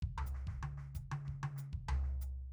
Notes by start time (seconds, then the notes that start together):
0.02 kick
0.18 floor tom
0.26 hi-hat pedal
0.34 snare
0.47 kick, snare
0.63 high tom
0.77 snare
0.94 kick, snare, hi-hat pedal
1.12 high tom
1.25 kick, snare
1.43 high tom
1.56 snare, hi-hat pedal
1.73 kick
1.88 floor tom
2.04 snare
2.21 hi-hat pedal